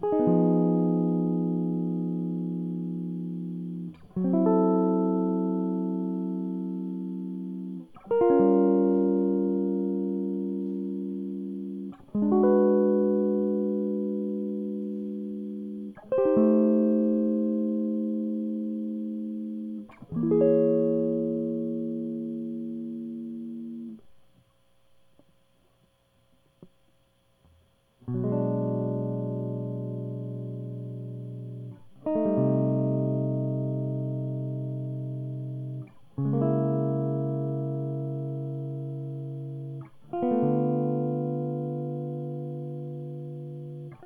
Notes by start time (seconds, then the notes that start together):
0.04 G#4
0.13 D#4
0.20 B3
0.28 F3
4.17 F#3
4.25 C4
4.34 E4
4.46 A4
8.11 A#4
8.22 F4
8.30 C#4
8.40 G3
12.16 G#3
12.23 D4
12.32 F#4
12.44 B4
16.12 C5
16.19 G4
16.26 D#4
16.37 A3
20.17 A#3
20.23 E4
20.32 G#4
20.41 C#5
28.09 B2
28.15 F#3
28.24 G#3
28.32 D4
32.07 D#4
32.16 A3
32.26 G3
32.39 C3
36.19 C#3
36.26 G#3
36.34 A#3
36.42 E4
40.14 F4
40.23 B3
40.32 A3
40.44 D3